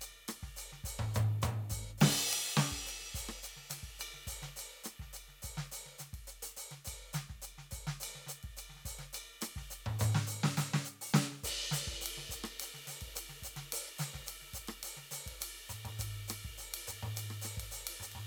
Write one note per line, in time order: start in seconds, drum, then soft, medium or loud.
0.01 hi-hat pedal medium
0.01 ride bell medium
0.28 cross-stick medium
0.28 hi-hat pedal medium
0.28 ride medium
0.43 kick soft
0.43 snare soft
0.56 hi-hat pedal medium
0.56 ride bell medium
0.72 snare soft
0.84 kick medium
0.84 hi-hat pedal medium
0.84 ride bell soft
0.99 high tom medium
1.14 hi-hat pedal medium
1.14 high tom loud
1.42 hi-hat pedal medium
1.42 high tom loud
1.70 kick medium
1.70 hi-hat pedal medium
1.98 snare loud
1.98 hi-hat pedal soft
1.98 crash loud
2.28 hi-hat pedal medium
2.33 ride loud
2.56 snare loud
2.56 hi-hat pedal medium
2.72 kick soft
2.72 snare soft
2.87 hi-hat pedal medium
2.87 ride bell medium
3.01 snare soft
3.14 kick medium
3.14 hi-hat pedal medium
3.14 ride soft
3.28 cross-stick medium
3.28 ride soft
3.43 hi-hat pedal medium
3.43 ride bell medium
3.56 snare soft
3.70 snare soft
3.70 hi-hat pedal medium
3.70 ride loud
3.83 kick soft
3.83 ride soft
3.99 hi-hat pedal medium
3.99 ride bell loud
4.13 snare soft
4.27 kick soft
4.27 hi-hat pedal medium
4.27 ride soft
4.42 snare soft
4.42 ride soft
4.56 hi-hat pedal medium
4.56 ride bell medium
4.84 cross-stick medium
4.84 hi-hat pedal medium
4.84 ride bell soft
4.99 kick soft
4.99 snare soft
5.13 hi-hat pedal medium
5.13 ride bell medium
5.28 snare soft
5.42 kick soft
5.42 hi-hat pedal medium
5.42 ride bell soft
5.57 snare medium
5.57 ride soft
5.72 hi-hat pedal medium
5.72 ride bell medium
5.86 snare soft
5.98 snare soft
5.98 hi-hat pedal medium
5.98 ride soft
6.13 kick soft
6.13 ride soft
6.27 hi-hat pedal medium
6.27 ride bell soft
6.42 open hi-hat loud
6.57 hi-hat pedal medium
6.57 ride bell soft
6.71 snare soft
6.71 ride soft
6.85 kick soft
6.85 hi-hat pedal medium
6.85 ride bell medium
7.13 snare medium
7.13 hi-hat pedal medium
7.13 ride soft
7.29 kick soft
7.29 snare soft
7.42 hi-hat pedal medium
7.42 ride bell medium
7.58 snare soft
7.71 kick soft
7.71 hi-hat pedal medium
7.71 ride soft
7.87 snare medium
7.87 ride soft
8.00 hi-hat pedal medium
8.00 ride bell loud
8.15 snare soft
8.26 snare soft
8.26 hi-hat pedal loud
8.26 ride soft
8.43 kick soft
8.43 ride soft
8.57 hi-hat pedal medium
8.57 ride bell medium
8.69 snare soft
8.74 snare soft
8.76 snare soft
8.79 snare soft
8.85 kick soft
8.85 hi-hat pedal medium
8.85 ride soft
8.99 snare soft
8.99 ride soft
9.13 hi-hat pedal medium
9.13 ride bell loud
9.41 cross-stick medium
9.41 hi-hat pedal medium
9.41 ride loud
9.56 kick medium
9.56 snare soft
9.70 cross-stick soft
9.70 hi-hat pedal medium
9.70 ride medium
9.86 high tom medium
9.99 hi-hat pedal loud
9.99 high tom loud
10.15 snare medium
10.27 hi-hat pedal loud
10.43 snare loud
10.57 snare medium
10.57 hi-hat pedal medium
10.73 snare medium
10.85 hi-hat pedal medium
11.01 open hi-hat medium
11.14 snare loud
11.14 hi-hat pedal medium
11.24 snare soft
11.31 snare soft
11.36 snare soft
11.43 kick soft
11.43 hi-hat pedal loud
11.43 ride loud
11.71 snare medium
11.71 hi-hat pedal loud
11.87 kick medium
11.87 snare soft
12.01 hi-hat pedal medium
12.06 ride loud
12.17 snare soft
12.29 kick soft
12.29 hi-hat pedal loud
12.29 ride medium
12.44 cross-stick medium
12.44 ride medium
12.60 hi-hat pedal medium
12.60 ride loud
12.74 snare soft
12.87 snare soft
12.87 hi-hat pedal medium
12.87 ride medium
13.01 kick soft
13.01 ride medium
13.15 hi-hat pedal loud
13.15 ride loud
13.29 snare soft
13.42 kick soft
13.42 hi-hat pedal medium
13.42 ride medium
13.56 snare medium
13.56 ride medium
13.72 hi-hat pedal loud
13.72 ride loud
13.98 snare medium
13.98 hi-hat pedal medium
13.98 ride medium
14.13 kick soft
14.13 snare soft
14.26 hi-hat pedal medium
14.26 ride loud
14.41 snare soft
14.53 kick soft
14.53 hi-hat pedal medium
14.53 ride medium
14.68 cross-stick medium
14.68 ride medium
14.83 hi-hat pedal medium
14.83 ride loud
14.97 snare soft
15.11 snare soft
15.11 hi-hat pedal medium
15.11 ride medium
15.26 kick soft
15.26 ride medium
15.40 hi-hat pedal medium
15.40 ride loud
15.69 hi-hat pedal medium
15.69 high tom medium
15.69 ride medium
15.85 high tom medium
15.85 ride medium
15.99 kick soft
15.99 hi-hat pedal medium
15.99 ride medium
16.28 cross-stick medium
16.28 hi-hat pedal medium
16.28 ride loud
16.45 kick soft
16.58 hi-hat pedal medium
16.74 ride loud
16.87 hi-hat pedal loud
16.87 high tom soft
17.03 high tom medium
17.16 hi-hat pedal medium
17.16 ride loud
17.30 cross-stick soft
17.42 cross-stick soft
17.42 hi-hat pedal medium
17.46 ride soft
17.57 kick medium
17.57 ride medium
17.71 hi-hat pedal medium
17.87 ride loud
18.00 hi-hat pedal medium
18.00 high tom medium
18.12 high tom medium
18.12 ride medium